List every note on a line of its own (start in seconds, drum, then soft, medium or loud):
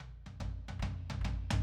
0.00 floor tom medium
0.26 floor tom medium
0.26 high tom medium
0.40 kick soft
0.40 floor tom medium
0.40 high tom medium
0.68 floor tom medium
0.68 high tom medium
0.79 kick soft
0.79 floor tom medium
0.79 high tom loud
1.10 floor tom loud
1.10 high tom medium
1.21 kick soft
1.21 floor tom medium
1.21 high tom loud
1.50 floor tom loud
1.50 high tom loud